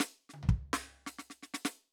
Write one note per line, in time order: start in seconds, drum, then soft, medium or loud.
0.00 snare loud
0.29 snare soft
0.34 high tom soft
0.43 floor tom medium
0.49 kick loud
0.73 snare loud
1.06 snare medium
1.19 snare medium
1.30 snare soft
1.43 snare soft
1.54 snare medium
1.65 snare loud